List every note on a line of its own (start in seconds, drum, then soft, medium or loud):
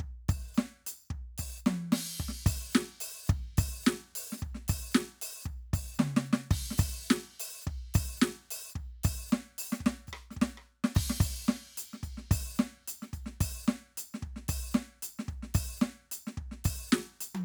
0.01 kick medium
0.29 kick loud
0.29 percussion medium
0.55 snare loud
0.55 percussion medium
0.87 percussion loud
1.11 kick medium
1.39 kick medium
1.39 percussion loud
1.58 percussion medium
1.67 snare loud
1.67 high tom loud
1.93 snare loud
1.93 crash loud
2.21 kick medium
2.29 snare medium
2.47 kick loud
2.47 percussion loud
2.74 snare loud
2.74 percussion medium
3.01 percussion loud
3.28 kick loud
3.28 percussion medium
3.58 kick loud
3.58 percussion loud
3.84 snare loud
3.84 percussion medium
4.16 percussion loud
4.33 snare medium
4.39 kick medium
4.39 percussion medium
4.56 snare soft
4.69 kick loud
4.69 percussion loud
4.93 snare loud
4.93 percussion medium
5.22 percussion loud
5.43 kick medium
5.43 percussion medium
5.74 kick loud
5.74 percussion loud
5.95 percussion medium
6.00 snare loud
6.00 mid tom loud
6.17 snare loud
6.26 percussion soft
6.34 snare loud
6.52 kick loud
6.52 crash loud
6.72 snare medium
6.79 kick loud
6.79 percussion loud
7.11 snare loud
7.11 percussion medium
7.41 percussion loud
7.63 percussion medium
7.68 kick medium
7.95 kick loud
7.95 percussion loud
8.18 percussion medium
8.23 snare loud
8.52 percussion loud
8.71 percussion medium
8.76 kick medium
9.04 kick loud
9.04 percussion loud
9.30 snare loud
9.30 percussion medium
9.59 percussion loud
9.73 snare medium
9.73 percussion soft
9.81 kick soft
9.87 snare loud
10.08 kick soft
10.08 percussion soft
10.14 high tom medium
10.32 snare soft
10.32 percussion soft
10.37 kick soft
10.42 snare loud
10.49 percussion soft
10.58 high tom medium
10.85 snare loud
10.96 kick loud
10.96 crash loud
11.11 snare medium
11.21 kick loud
11.21 percussion loud
11.45 snare loud
11.45 percussion medium
11.78 percussion loud
11.94 snare soft
12.04 kick medium
12.04 percussion soft
12.18 snare soft
12.32 kick loud
12.32 percussion loud
12.57 snare loud
12.57 percussion medium
12.89 percussion loud
13.03 snare medium
13.14 kick medium
13.14 percussion soft
13.27 snare medium
13.41 kick loud
13.41 percussion loud
13.65 snare loud
13.65 percussion medium
13.98 percussion loud
14.15 snare medium
14.23 kick medium
14.23 percussion soft
14.37 snare soft
14.49 kick loud
14.49 percussion loud
14.73 snare loud
14.73 percussion medium
15.03 percussion loud
15.20 snare medium
15.29 kick medium
15.29 percussion soft
15.44 snare soft
15.55 kick loud
15.55 percussion loud
15.79 snare loud
15.79 percussion medium
16.12 percussion loud
16.28 snare medium
16.38 kick medium
16.52 snare soft
16.65 kick loud
16.65 percussion loud
16.90 snare loud
16.90 percussion medium
17.22 percussion loud
17.36 high tom loud